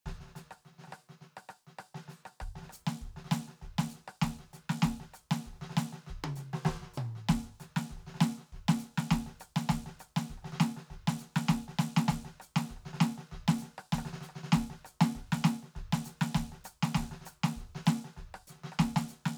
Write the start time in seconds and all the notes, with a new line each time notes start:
0.06 kick, snare
0.14 snare
0.21 snare
0.27 snare
0.36 snare, hi-hat pedal
0.52 cross-stick
0.66 snare
0.72 snare
0.76 snare
0.79 snare
0.84 cross-stick, snare
0.93 cross-stick
1.10 snare
1.22 snare
1.38 cross-stick
1.50 cross-stick
1.68 snare
1.79 cross-stick
1.95 snare
2.09 snare, hi-hat pedal
2.26 cross-stick
2.41 kick, cross-stick
2.48 kick
2.56 snare
2.63 snare
2.70 cross-stick, hi-hat pedal
2.87 snare
3.02 kick, snare
3.17 snare
3.25 snare
3.32 snare, hi-hat pedal
3.48 snare
3.62 kick, snare
3.79 snare
3.90 hi-hat pedal
3.95 snare
4.08 cross-stick
4.22 kick, snare
4.40 snare
4.54 snare, hi-hat pedal
4.70 snare
4.83 kick, snare
5.01 snare
5.14 cross-stick, hi-hat pedal
5.32 snare
5.45 kick, snare
5.54 snare
5.61 snare
5.70 snare
5.78 snare, hi-hat pedal
5.93 snare
6.07 kick, snare
6.25 high tom
6.36 snare, hi-hat pedal
6.54 snare
6.66 kick, snare
6.83 snare
6.94 hi-hat pedal, mid tom
7.16 snare
7.29 kick, snare
7.36 kick
7.45 snare
7.60 snare, hi-hat pedal
7.77 snare
7.90 kick, snare
7.98 snare
8.02 snare
8.07 snare
8.15 snare
8.21 snare, hi-hat pedal
8.38 snare
8.53 kick, snare
8.69 snare
8.80 snare, hi-hat pedal
8.98 snare
9.11 kick, snare
9.27 snare
9.41 cross-stick, hi-hat pedal
9.57 snare
9.70 kick, snare
9.87 snare
10.00 cross-stick, hi-hat pedal
10.17 snare
10.30 kick, snare
10.38 cross-stick
10.43 snare
10.45 snare
10.53 snare
10.61 snare, hi-hat pedal
10.77 snare
10.91 kick, snare
11.08 snare
11.19 snare, hi-hat pedal
11.37 snare
11.49 kick, snare
11.69 snare
11.79 snare, hi-hat pedal
11.97 snare
12.09 kick, snare
12.25 snare
12.41 cross-stick, hi-hat pedal
12.57 snare
12.70 kick, snare
12.77 cross-stick
12.83 snare
12.85 snare
12.94 snare
13.01 snare, hi-hat pedal
13.18 snare
13.32 kick, snare
13.49 snare
13.59 snare, hi-hat pedal
13.79 cross-stick
13.93 kick, snare
13.99 cross-stick
14.06 snare
14.13 snare
14.21 snare, hi-hat pedal
14.30 cross-stick
14.36 snare
14.44 snare
14.53 kick, snare
14.71 snare
14.85 cross-stick, hi-hat pedal
15.01 snare
15.16 kick, snare
15.33 snare
15.45 snare, hi-hat pedal
15.63 snare
15.76 kick, snare
15.93 snare
16.05 snare, hi-hat pedal
16.22 snare
16.35 kick, snare
16.53 snare
16.65 cross-stick, hi-hat pedal
16.83 snare
16.95 kick, snare
17.00 snare
17.12 snare
17.22 snare
17.26 cross-stick, hi-hat pedal
17.44 snare
17.57 kick, snare
17.76 snare
17.86 snare, hi-hat pedal
18.05 snare
18.17 kick, snare
18.35 cross-stick
18.48 snare, hi-hat pedal
18.56 snare
18.61 snare
18.64 snare
18.73 cross-stick
18.79 kick, snare
18.97 snare
19.09 snare, hi-hat pedal
19.26 snare